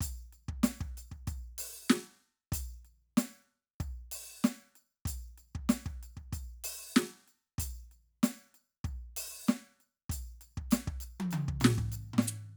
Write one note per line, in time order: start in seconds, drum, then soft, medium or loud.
0.01 kick medium
0.01 percussion loud
0.33 percussion soft
0.49 kick medium
0.64 snare loud
0.64 percussion loud
0.81 kick medium
0.98 percussion medium
1.12 kick soft
1.28 kick medium
1.28 percussion medium
1.59 percussion loud
1.90 snare loud
1.90 percussion medium
2.53 kick medium
2.53 percussion loud
2.85 percussion soft
3.18 snare loud
3.18 percussion loud
3.81 kick medium
3.81 percussion medium
4.12 percussion loud
4.44 snare loud
4.44 percussion medium
4.76 percussion soft
5.06 kick medium
5.06 percussion loud
5.38 percussion soft
5.55 kick medium
5.70 snare loud
5.70 percussion loud
5.86 kick medium
6.03 percussion medium
6.17 kick soft
6.33 kick medium
6.33 percussion medium
6.64 percussion loud
6.97 snare loud
6.97 percussion medium
7.28 percussion soft
7.59 kick medium
7.59 percussion loud
7.92 percussion soft
8.24 snare loud
8.24 percussion loud
8.55 percussion soft
8.85 kick medium
8.85 percussion soft
9.17 percussion loud
9.48 snare loud
9.48 percussion medium
9.50 percussion medium
9.81 percussion soft
10.10 kick medium
10.10 percussion loud
10.41 percussion medium
10.58 kick medium
10.71 snare loud
10.71 percussion medium
10.71 percussion loud
10.88 kick medium
11.01 percussion medium
11.20 high tom loud
11.31 mid tom loud
11.31 percussion medium
11.49 kick medium
11.61 floor tom loud
11.61 percussion medium
11.65 snare loud
11.78 kick medium
11.86 kick soft
11.92 percussion medium
12.14 floor tom medium
12.19 snare loud
12.19 percussion medium
12.28 floor tom loud